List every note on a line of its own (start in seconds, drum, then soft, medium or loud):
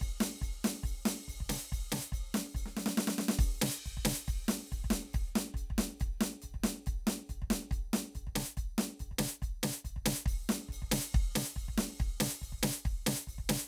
0.01 kick medium
0.01 percussion medium
0.21 snare loud
0.21 percussion loud
0.41 kick soft
0.41 snare soft
0.41 percussion medium
0.64 snare loud
0.64 percussion medium
0.83 kick soft
0.83 snare soft
0.83 percussion medium
1.06 snare loud
1.06 percussion loud
1.28 kick soft
1.28 percussion medium
1.40 kick soft
1.49 snare loud
1.49 percussion loud
1.72 kick soft
1.72 percussion medium
1.92 snare loud
1.92 percussion medium
2.12 kick soft
2.12 snare soft
2.12 percussion medium
2.34 snare loud
2.34 percussion medium
2.55 kick soft
2.55 percussion medium
2.66 snare medium
2.77 snare loud
2.86 snare loud
2.98 snare loud
3.07 snare loud
3.18 snare loud
3.39 kick medium
3.39 percussion loud
3.62 snare loud
3.62 crash medium
3.86 kick soft
3.86 percussion medium
3.97 kick soft
4.05 snare loud
4.05 percussion medium
4.20 snare soft
4.28 kick medium
4.28 percussion medium
4.48 snare loud
4.48 percussion medium
4.69 kick soft
4.69 snare soft
4.69 percussion medium
4.84 kick soft
4.91 snare loud
4.91 percussion medium
5.13 kick medium
5.13 snare soft
5.13 percussion medium
5.35 closed hi-hat medium
5.35 snare loud
5.54 closed hi-hat medium
5.54 kick soft
5.54 snare soft
5.70 kick soft
5.78 closed hi-hat medium
5.78 snare loud
6.00 closed hi-hat medium
6.00 kick medium
6.21 closed hi-hat medium
6.21 snare loud
6.41 closed hi-hat medium
6.41 kick soft
6.41 snare soft
6.54 kick soft
6.64 closed hi-hat medium
6.64 snare loud
6.85 closed hi-hat medium
6.85 kick medium
6.85 snare soft
7.07 closed hi-hat medium
7.07 snare loud
7.28 closed hi-hat soft
7.28 kick soft
7.28 snare soft
7.42 kick soft
7.50 closed hi-hat medium
7.50 snare loud
7.71 closed hi-hat medium
7.71 kick medium
7.71 snare soft
7.93 closed hi-hat medium
7.93 snare loud
8.14 closed hi-hat medium
8.14 kick soft
8.14 snare soft
8.27 kick soft
8.36 closed hi-hat medium
8.36 snare loud
8.55 closed hi-hat medium
8.55 kick soft
8.55 snare soft
8.78 closed hi-hat medium
8.78 snare loud
9.00 closed hi-hat medium
9.00 kick soft
9.11 kick soft
9.19 closed hi-hat medium
9.19 snare loud
9.39 closed hi-hat medium
9.39 kick soft
9.39 snare soft
9.63 closed hi-hat medium
9.63 snare loud
9.81 closed hi-hat medium
9.81 kick soft
9.81 snare soft
9.96 kick soft
10.06 closed hi-hat loud
10.06 snare loud
10.26 kick medium
10.26 percussion medium
10.49 snare loud
10.49 percussion medium
10.69 kick soft
10.69 snare soft
10.69 percussion medium
10.82 kick soft
10.92 snare loud
10.92 percussion loud
11.12 kick loud
11.12 snare soft
11.12 percussion medium
11.36 snare loud
11.36 percussion loud
11.56 kick soft
11.56 percussion soft
11.68 kick soft
11.78 snare loud
11.78 percussion medium
11.97 kick medium
11.97 snare soft
11.97 percussion soft
12.20 snare loud
12.20 percussion loud
12.41 kick soft
12.41 snare soft
12.41 percussion medium
12.52 kick soft
12.63 snare loud
12.63 percussion medium
12.85 kick medium
12.85 percussion soft
13.07 snare loud
13.07 percussion medium
13.27 kick soft
13.27 snare soft
13.27 percussion medium
13.38 kick soft
13.49 snare loud
13.49 percussion medium